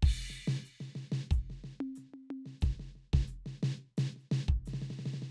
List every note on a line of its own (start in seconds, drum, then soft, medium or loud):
0.03 kick medium
0.03 hi-hat pedal medium
0.03 crash medium
0.30 snare soft
0.48 snare medium
0.65 hi-hat pedal medium
0.81 snare soft
0.95 snare soft
1.12 snare medium
1.31 kick medium
1.31 hi-hat pedal medium
1.50 snare soft
1.64 snare soft
1.81 high tom loud
1.96 snare soft
1.96 hi-hat pedal medium
2.14 high tom medium
2.31 high tom medium
2.46 snare soft
2.61 kick medium
2.61 snare soft
2.61 hi-hat pedal medium
2.80 snare soft
2.96 snare soft
3.13 kick medium
3.13 snare medium
3.28 hi-hat pedal medium
3.46 snare soft
3.63 snare medium
3.79 snare soft
3.97 snare medium
3.97 hi-hat pedal medium
4.16 snare soft
4.16 hi-hat pedal soft
4.32 snare medium
4.48 kick medium
4.66 snare soft
4.66 hi-hat pedal medium
4.74 snare soft
4.82 snare soft
4.90 snare soft
4.99 snare soft
5.06 snare medium
5.14 snare soft
5.22 snare soft